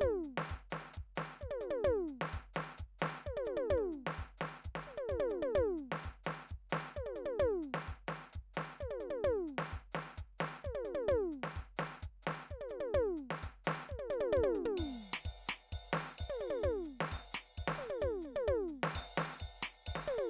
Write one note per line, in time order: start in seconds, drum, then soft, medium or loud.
0.01 kick soft
0.01 high tom loud
0.24 hi-hat pedal medium
0.38 snare medium
0.49 closed hi-hat loud
0.49 kick soft
0.70 snare medium
0.70 hi-hat pedal medium
0.82 snare soft
0.94 closed hi-hat loud
0.94 kick soft
1.16 snare medium
1.16 hi-hat pedal medium
1.41 kick soft
1.41 high tom soft
1.51 high tom medium
1.61 hi-hat pedal medium
1.61 high tom medium
1.70 high tom medium
1.84 kick soft
1.84 high tom loud
2.08 hi-hat pedal medium
2.22 snare medium
2.33 closed hi-hat loud
2.33 kick soft
2.54 snare medium
2.54 hi-hat pedal medium
2.78 closed hi-hat medium
2.78 kick soft
2.99 snare medium
2.99 hi-hat pedal medium
3.26 kick soft
3.26 high tom medium
3.37 high tom medium
3.45 hi-hat pedal medium
3.45 high tom medium
3.57 high tom medium
3.70 kick soft
3.70 high tom loud
3.77 high tom soft
3.92 hi-hat pedal medium
4.07 snare medium
4.18 closed hi-hat medium
4.18 kick soft
4.38 snare medium
4.38 hi-hat pedal medium
4.65 closed hi-hat medium
4.65 kick soft
4.75 snare medium
4.83 hi-hat pedal medium
4.87 high tom soft
4.97 high tom medium
5.09 kick soft
5.09 high tom medium
5.20 high tom loud
5.30 hi-hat pedal medium
5.30 high tom medium
5.42 high tom loud
5.55 kick soft
5.55 high tom loud
5.77 hi-hat pedal medium
5.92 snare medium
6.04 closed hi-hat medium
6.04 kick soft
6.24 snare medium
6.24 hi-hat pedal medium
6.49 kick soft
6.49 closed hi-hat medium
6.70 snare medium
6.70 hi-hat pedal medium
6.96 kick soft
6.96 high tom medium
7.06 high tom medium
7.16 hi-hat pedal medium
7.16 high tom medium
7.26 high tom medium
7.39 kick soft
7.39 high tom loud
7.62 hi-hat pedal medium
7.74 snare medium
7.86 kick soft
7.86 closed hi-hat medium
8.08 snare medium
8.08 hi-hat pedal medium
8.18 snare soft
8.33 closed hi-hat medium
8.33 kick soft
8.54 snare medium
8.54 hi-hat pedal medium
8.80 kick soft
8.80 high tom medium
8.91 high tom medium
9.00 hi-hat pedal medium
9.00 high tom medium
9.10 high tom medium
9.24 kick soft
9.24 high tom loud
9.31 kick soft
9.47 hi-hat pedal medium
9.59 snare medium
9.70 closed hi-hat medium
9.70 kick soft
9.92 snare medium
9.92 hi-hat pedal medium
10.06 snare soft
10.18 closed hi-hat loud
10.18 kick soft
10.39 snare medium
10.39 hi-hat pedal medium
10.64 kick soft
10.64 high tom medium
10.75 high tom medium
10.85 hi-hat pedal medium
10.85 high tom medium
10.95 high tom medium
11.08 kick soft
11.08 high tom loud
11.32 hi-hat pedal medium
11.44 snare medium
11.56 closed hi-hat medium
11.56 kick soft
11.77 snare medium
11.77 hi-hat pedal medium
12.03 closed hi-hat medium
12.03 kick soft
12.23 hi-hat pedal medium
12.27 snare medium
12.51 kick soft
12.51 high tom soft
12.61 high tom medium
12.69 hi-hat pedal medium
12.69 high tom medium
12.80 high tom medium
12.94 kick soft
12.94 high tom loud
13.17 hi-hat pedal medium
13.31 snare medium
13.41 closed hi-hat loud
13.41 kick soft
13.41 snare soft
13.64 snare medium
13.64 hi-hat pedal medium
13.89 kick soft
13.89 high tom soft
14.10 hi-hat pedal medium
14.10 high tom medium
14.20 high tom loud
14.32 high tom loud
14.37 kick soft
14.43 high tom loud
14.55 hi-hat pedal medium
14.55 mid tom medium
14.65 mid tom medium
14.78 kick soft
14.78 ride bell loud
14.98 hi-hat pedal medium
14.98 ride soft
15.14 snare medium
15.25 kick soft
15.25 ride bell medium
15.46 snare loud
15.46 hi-hat pedal medium
15.72 kick soft
15.72 ride bell medium
15.93 snare medium
15.93 hi-hat pedal medium
16.18 kick soft
16.18 ride loud
16.30 high tom medium
16.39 hi-hat pedal medium
16.39 high tom medium
16.50 high tom medium
16.63 kick soft
16.63 high tom loud
16.85 hi-hat pedal medium
17.01 snare medium
17.12 kick soft
17.12 ride bell loud
17.31 snare medium
17.31 hi-hat pedal medium
17.58 kick soft
17.58 ride bell medium
17.68 snare medium
17.78 hi-hat pedal medium
17.78 high tom medium
17.90 high tom medium
18.02 kick soft
18.02 high tom loud
18.22 hi-hat pedal medium
18.22 high tom soft
18.36 high tom medium
18.48 kick soft
18.48 high tom loud
18.68 hi-hat pedal medium
18.84 snare medium
18.95 kick soft
18.95 ride bell loud
19.15 snare medium
19.15 hi-hat pedal medium
19.40 kick soft
19.40 ride bell medium
19.47 kick soft
19.61 snare medium
19.61 hi-hat pedal medium
19.87 kick soft
19.87 ride loud
19.96 snare medium
20.06 hi-hat pedal medium
20.06 high tom medium
20.18 high tom medium